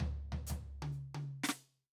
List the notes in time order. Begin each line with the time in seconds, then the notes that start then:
0.00 floor tom
0.32 floor tom
0.47 floor tom, hi-hat pedal
0.82 high tom
0.92 hi-hat pedal
1.15 high tom
1.44 snare, hi-hat pedal
1.49 snare